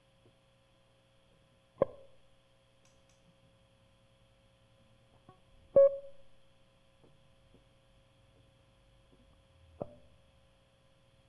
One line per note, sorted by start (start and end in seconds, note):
5.77 5.89 C#5
9.82 9.91 D5